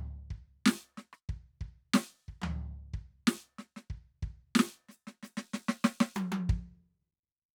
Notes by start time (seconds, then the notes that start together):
0.31 kick
0.66 snare
0.68 snare
0.98 snare
1.13 cross-stick
1.29 kick
1.61 kick
1.94 snare
1.96 snare
2.29 kick
2.42 floor tom, high tom
2.94 kick
3.28 snare
3.59 snare
3.77 snare
3.90 kick
4.23 kick
4.56 snare
4.60 snare
4.89 snare, hi-hat pedal
5.07 snare
5.23 snare, hi-hat pedal
5.38 snare
5.54 snare, hi-hat pedal
5.69 snare
5.85 snare, hi-hat pedal
6.01 snare
6.15 hi-hat pedal, high tom
6.32 high tom
6.50 kick